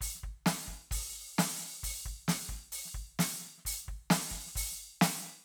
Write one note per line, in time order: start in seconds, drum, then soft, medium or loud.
0.01 open hi-hat loud
0.01 kick soft
0.15 snare soft
0.24 kick soft
0.24 open hi-hat soft
0.46 open hi-hat loud
0.46 snare loud
0.68 kick soft
0.68 open hi-hat soft
0.89 open hi-hat loud
0.89 kick medium
0.89 snare soft
1.11 snare soft
1.11 open hi-hat soft
1.39 open hi-hat loud
1.39 snare loud
1.61 open hi-hat soft
1.78 snare soft
1.84 open hi-hat loud
1.84 kick soft
2.06 kick soft
2.06 open hi-hat soft
2.28 open hi-hat loud
2.28 snare loud
2.49 kick soft
2.49 open hi-hat soft
2.72 open hi-hat loud
2.85 snare soft
2.95 kick soft
2.95 open hi-hat soft
3.19 open hi-hat loud
3.19 snare loud
3.58 snare soft
3.65 open hi-hat loud
3.65 kick soft
3.85 kick soft
3.85 snare soft
3.85 open hi-hat soft
4.11 open hi-hat loud
4.11 snare loud
4.31 kick soft
4.31 open hi-hat soft
4.47 snare soft
4.56 open hi-hat loud
4.56 kick medium
4.71 snare soft
4.78 open hi-hat soft
5.02 open hi-hat loud
5.02 snare loud
5.23 open hi-hat soft